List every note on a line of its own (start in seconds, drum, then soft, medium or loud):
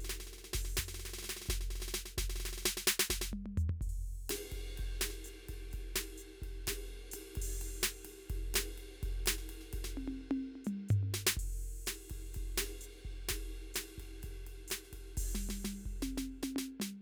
0.01 snare soft
0.01 hi-hat pedal medium
0.09 snare medium
0.14 snare soft
0.20 snare soft
0.20 hi-hat pedal medium
0.27 snare soft
0.33 snare soft
0.38 snare soft
0.44 snare soft
0.53 kick soft
0.53 snare medium
0.53 hi-hat pedal medium
0.63 kick soft
0.63 snare soft
0.77 kick soft
0.77 snare medium
0.88 snare soft
0.94 snare soft
1.00 snare soft
1.05 snare soft
1.09 snare soft
1.14 snare medium
1.19 snare medium
1.23 snare soft
1.24 snare medium
1.29 snare medium
1.32 snare soft
1.37 snare soft
1.42 snare soft
1.46 kick soft
1.46 snare soft
1.50 snare medium
1.60 kick soft
1.60 snare soft
1.70 snare soft
1.75 snare soft
1.80 snare soft
1.82 snare medium
1.88 snare medium
1.94 snare medium
2.06 snare soft
2.18 kick soft
2.18 snare medium
2.24 kick soft
2.30 snare medium
2.36 snare soft
2.40 snare soft
2.45 snare medium
2.49 snare soft
2.53 snare soft
2.58 snare soft
2.62 snare soft
2.66 snare loud
2.77 snare medium
2.87 snare loud
3.00 snare loud
3.10 kick soft
3.10 snare loud
3.10 hi-hat pedal soft
3.21 snare medium
3.32 kick soft
3.32 mid tom medium
3.46 mid tom medium
3.57 floor tom loud
3.57 hi-hat pedal soft
3.69 floor tom loud
3.81 kick soft
3.81 hi-hat pedal soft
3.81 crash soft
3.87 kick soft
3.87 crash medium
3.94 crash soft
4.29 snare medium
4.29 hi-hat pedal medium
4.29 ride loud
4.52 kick soft
4.52 ride soft
4.67 snare soft
4.75 hi-hat pedal soft
4.75 ride soft
4.79 kick soft
5.01 snare medium
5.01 ride medium
5.10 snare soft
5.24 hi-hat pedal medium
5.24 ride soft
5.49 kick soft
5.49 ride medium
5.55 kick soft
5.71 kick soft
5.71 hi-hat pedal soft
5.71 ride soft
5.79 kick soft
5.96 snare medium
5.96 ride medium
6.18 hi-hat pedal medium
6.42 kick soft
6.42 ride soft
6.67 kick soft
6.67 snare medium
6.67 ride medium
6.84 snare soft
7.12 hi-hat pedal loud
7.12 ride medium
7.30 snare soft
7.35 kick soft
7.35 ride medium
7.42 hi-hat pedal loud
7.61 ride medium
7.83 snare loud
7.83 ride soft
8.05 ride medium
8.19 snare soft
8.23 snare soft
8.26 kick soft
8.26 snare soft
8.26 ride medium
8.37 kick soft
8.54 snare loud
8.54 ride loud
8.74 snare soft
8.78 ride soft
8.89 snare soft
8.93 snare soft
8.96 snare soft
9.00 kick soft
9.00 snare soft
9.00 ride soft
9.10 kick soft
9.22 kick soft
9.26 snare loud
9.26 ride medium
9.38 snare soft
9.49 ride medium
9.61 snare soft
9.73 kick soft
9.73 ride medium
9.79 kick soft
9.84 snare medium
9.97 high tom medium
10.08 high tom medium
10.21 high tom soft
10.31 high tom loud
10.56 high tom soft
10.65 hi-hat pedal medium
10.65 mid tom loud
10.89 hi-hat pedal medium
10.89 floor tom loud
11.03 high tom soft
11.10 kick soft
11.10 snare medium
11.27 snare loud
11.37 kick soft
11.37 crash medium
11.43 kick soft
11.87 snare medium
11.87 hi-hat pedal loud
11.87 ride medium
12.10 kick soft
12.10 ride medium
12.16 kick soft
12.21 snare soft
12.25 snare soft
12.28 snare soft
12.34 kick soft
12.34 hi-hat pedal medium
12.34 ride medium
12.42 kick soft
12.58 snare medium
12.58 ride medium
12.66 snare soft
12.81 hi-hat pedal medium
12.92 snare soft
12.96 snare soft
13.05 kick soft
13.10 kick soft
13.29 kick soft
13.29 snare medium
13.29 hi-hat pedal soft
13.29 ride medium
13.36 kick soft
13.42 snare soft
13.74 snare medium
13.74 hi-hat pedal medium
13.74 ride medium
13.88 snare soft
13.98 kick soft
13.98 ride soft
14.03 kick soft
14.22 kick soft
14.22 hi-hat pedal soft
14.22 ride medium
14.29 kick soft
14.47 ride soft
14.68 snare medium
14.68 hi-hat pedal medium
14.68 ride medium
14.85 snare soft
14.93 kick soft
14.93 ride soft
15.04 snare soft
15.08 snare soft
15.17 kick soft
15.17 hi-hat pedal loud
15.17 ride medium
15.24 kick soft
15.35 snare medium
15.35 mid tom medium
15.49 snare medium
15.49 mid tom medium
15.65 snare medium
15.65 mid tom medium
15.86 kick soft
16.02 snare medium
16.02 high tom loud
16.18 snare medium
16.18 high tom medium
16.43 snare medium
16.43 high tom loud
16.56 snare medium
16.56 high tom loud
16.80 snare medium
16.80 mid tom medium